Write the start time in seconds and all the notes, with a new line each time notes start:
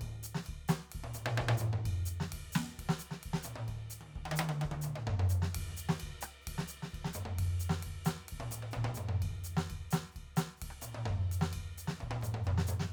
0.01 kick, ride bell
0.23 hi-hat pedal, ride
0.35 snare
0.43 hi-hat pedal, ride bell
0.49 kick
0.55 kick
0.57 kick
0.68 snare, hi-hat pedal
0.89 hi-hat pedal, ride
0.95 kick
1.01 kick, mid tom
1.14 hi-hat pedal, mid tom
1.26 mid tom
1.34 hi-hat pedal, mid tom
1.40 kick
1.46 kick, mid tom
1.57 floor tom, hi-hat pedal
1.73 floor tom
1.85 kick, ride bell
1.94 kick
2.05 hi-hat pedal
2.10 ride
2.20 snare
2.27 hi-hat pedal
2.32 kick, ride
2.52 snare, hi-hat pedal
2.74 hi-hat pedal
2.79 kick, ride
2.89 snare
2.99 hi-hat pedal, ride
3.11 snare
3.23 kick, ride
3.33 snare
3.43 hi-hat pedal, mid tom
3.56 mid tom
3.68 kick, ride bell
3.90 hi-hat pedal, ride
4.01 high tom
4.15 kick, high tom
4.25 high tom
4.31 high tom
4.36 hi-hat pedal, high tom
4.49 high tom
4.61 kick, high tom
4.71 kick, high tom
4.81 hi-hat pedal, mid tom
4.96 mid tom
5.07 kick, floor tom
5.19 floor tom
5.29 floor tom, hi-hat pedal
5.42 snare
5.55 kick, ride
5.63 kick
5.66 kick, snare
5.77 hi-hat pedal, ride
5.89 snare
5.96 hi-hat pedal, ride bell
6.03 kick
6.21 cross-stick, hi-hat pedal
6.42 hi-hat pedal
6.47 kick, ride
6.55 kick, snare
6.68 hi-hat pedal, ride
6.82 snare
6.89 hi-hat pedal
6.94 kick, ride bell
7.05 snare
7.13 floor tom, hi-hat pedal
7.25 floor tom
7.38 kick, ride
7.47 kick
7.60 hi-hat pedal, ride
7.70 snare
7.79 hi-hat pedal, ride
7.86 kick
8.05 snare, hi-hat pedal
8.28 kick, ride
8.38 kick, mid tom
8.51 hi-hat pedal, mid tom
8.62 mid tom
8.71 hi-hat pedal, mid tom
8.77 kick
8.84 mid tom
8.94 floor tom, hi-hat pedal
9.09 floor tom
9.22 kick, ride bell
9.32 kick
9.44 hi-hat pedal, ride
9.57 snare
9.70 kick, ride bell
9.79 kick
9.91 snare, hi-hat pedal
10.12 hi-hat pedal
10.16 kick, ride bell
10.36 snare, hi-hat pedal
10.57 hi-hat pedal
10.62 kick, ride
10.70 kick, cross-stick
10.81 kick, hi-hat pedal, mid tom
10.95 mid tom
11.05 kick, floor tom
11.17 kick
11.31 hi-hat pedal, ride
11.41 snare
11.53 kick, ride bell
11.78 hi-hat pedal, ride
11.87 snare
12.00 kick, mid tom
12.11 kick, mid tom
12.22 floor tom, hi-hat pedal, ride
12.34 floor tom
12.44 hi-hat pedal, mid tom
12.48 kick
12.58 snare
12.67 floor tom, hi-hat pedal
12.80 snare